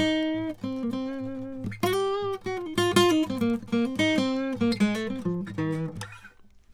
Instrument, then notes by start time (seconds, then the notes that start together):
acoustic guitar
0.00 D#4
0.65 C4
0.84 A#3
0.95 C4
1.84 F#4
1.94 G4
2.48 F#4
2.58 E4
2.79 F4
2.88 F#4
2.98 F4
3.12 D#4
3.31 C4
3.43 A#3
3.74 A#3
3.86 C4
4.00 D#4
4.19 C4
4.62 A#3
4.82 G#3
4.97 A3
5.13 C4
5.27 F3
5.59 D#3